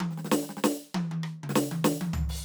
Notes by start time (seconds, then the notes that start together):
0.00 high tom
0.11 snare
0.17 snare
0.24 snare
0.32 snare
0.43 snare
0.49 snare
0.57 snare
0.64 snare
0.94 high tom
1.11 high tom
1.23 cross-stick
1.43 mid tom
1.49 snare
1.55 snare
1.71 high tom
1.84 snare
2.01 high tom
2.13 floor tom
2.29 crash
2.35 hi-hat pedal